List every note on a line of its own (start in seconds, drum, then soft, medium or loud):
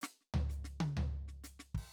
0.01 snare medium
0.01 hi-hat pedal soft
0.21 snare soft
0.34 floor tom loud
0.49 snare soft
0.49 hi-hat pedal soft
0.64 snare soft
0.80 closed hi-hat soft
0.80 high tom medium
0.97 floor tom medium
1.28 snare soft
1.44 snare soft
1.44 hi-hat pedal medium
1.59 snare soft
1.74 kick soft
1.74 crash soft